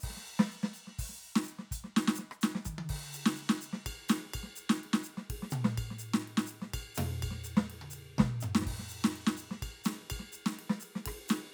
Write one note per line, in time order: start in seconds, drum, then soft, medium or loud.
0.01 kick soft
0.01 hi-hat pedal medium
0.01 crash medium
0.10 kick soft
0.10 snare soft
0.13 kick soft
0.17 snare soft
0.28 closed hi-hat soft
0.40 snare loud
0.46 hi-hat pedal soft
0.52 closed hi-hat soft
0.64 snare medium
0.74 closed hi-hat soft
0.74 hi-hat pedal medium
0.88 snare soft
0.99 open hi-hat loud
0.99 kick soft
1.06 kick soft
1.06 snare soft
1.25 open hi-hat soft
1.36 snare loud
1.44 hi-hat pedal medium
1.49 closed hi-hat medium
1.59 snare soft
1.72 closed hi-hat loud
1.72 kick soft
1.78 kick soft
1.81 kick soft
1.81 snare soft
1.97 snare loud
2.08 snare loud
2.16 snare soft
2.16 hi-hat pedal loud
2.32 cross-stick medium
2.42 snare loud
2.42 hi-hat pedal loud
2.56 snare medium
2.66 kick soft
2.66 hi-hat pedal loud
2.66 high tom medium
2.75 kick soft
2.75 high tom loud
2.90 kick medium
2.90 crash medium
2.99 kick soft
3.14 hi-hat pedal medium
3.14 ride medium
3.27 snare loud
3.36 hi-hat pedal medium
3.36 ride soft
3.50 snare loud
3.62 hi-hat pedal medium
3.74 snare medium
3.87 kick soft
3.87 ride bell loud
3.95 kick soft
4.09 snare loud
4.09 hi-hat pedal medium
4.09 ride loud
4.20 snare soft
4.34 kick soft
4.34 ride bell loud
4.41 kick soft
4.41 snare soft
4.56 hi-hat pedal loud
4.56 ride soft
4.70 snare loud
4.84 ride medium
4.94 snare loud
5.04 hi-hat pedal medium
5.04 ride soft
5.18 snare medium
5.30 kick soft
5.30 ride loud
5.36 kick soft
5.40 kick soft
5.40 snare medium
5.51 hi-hat pedal medium
5.51 mid tom loud
5.65 snare loud
5.78 kick soft
5.78 ride bell loud
5.84 kick soft
5.88 kick soft
5.88 snare soft
5.99 hi-hat pedal loud
6.04 ride medium
6.14 snare loud
6.21 hi-hat pedal soft
6.28 ride soft
6.38 snare loud
6.47 hi-hat pedal medium
6.52 ride medium
6.62 snare medium
6.74 kick soft
6.74 ride bell loud
6.80 kick soft
6.84 kick soft
6.96 hi-hat pedal medium
6.96 ride loud
6.96 floor tom loud
7.23 kick soft
7.23 ride bell loud
7.30 kick soft
7.30 snare soft
7.33 kick soft
7.45 hi-hat pedal loud
7.45 ride medium
7.58 snare loud
7.71 ride medium
7.82 high tom medium
7.91 hi-hat pedal medium
7.91 ride medium
8.19 kick soft
8.19 snare loud
8.19 mid tom loud
8.27 kick soft
8.30 kick soft
8.41 kick soft
8.41 floor tom medium
8.41 hi-hat pedal medium
8.56 snare loud
8.62 snare medium
8.67 kick medium
8.67 crash medium
8.74 kick soft
8.80 snare soft
8.89 hi-hat pedal medium
8.89 ride medium
9.05 snare loud
9.17 ride medium
9.28 snare loud
9.38 hi-hat pedal medium
9.38 ride medium
9.52 snare medium
9.63 kick soft
9.63 ride bell loud
9.69 kick soft
9.71 kick soft
9.85 snare loud
9.85 hi-hat pedal medium
9.85 ride medium
10.11 kick soft
10.11 ride bell loud
10.18 kick soft
10.18 snare soft
10.21 kick soft
10.33 hi-hat pedal medium
10.33 ride soft
10.47 snare loud
10.60 ride medium
10.70 snare medium
10.81 hi-hat pedal medium
10.81 ride medium
10.96 snare medium
11.06 kick soft
11.06 cross-stick medium
11.06 ride loud
11.29 snare loud
11.29 hi-hat pedal medium
11.29 ride loud